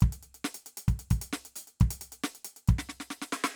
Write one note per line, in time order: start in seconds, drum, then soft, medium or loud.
0.01 kick loud
0.01 closed hi-hat medium
0.13 closed hi-hat medium
0.23 closed hi-hat medium
0.35 closed hi-hat medium
0.45 snare loud
0.55 closed hi-hat medium
0.66 closed hi-hat medium
0.78 closed hi-hat loud
0.88 kick loud
0.88 closed hi-hat medium
1.00 closed hi-hat medium
1.11 kick loud
1.11 closed hi-hat medium
1.22 closed hi-hat loud
1.33 snare loud
1.45 closed hi-hat medium
1.56 closed hi-hat loud
1.68 closed hi-hat medium
1.80 kick loud
1.80 closed hi-hat medium
1.91 closed hi-hat loud
2.01 closed hi-hat loud
2.12 closed hi-hat medium
2.24 snare loud
2.35 closed hi-hat medium
2.45 closed hi-hat loud
2.57 closed hi-hat medium
2.68 kick loud
2.68 closed hi-hat medium
2.79 snare medium
2.89 snare medium
3.01 snare medium
3.11 snare medium
3.22 snare medium
3.33 snare loud
3.44 snare loud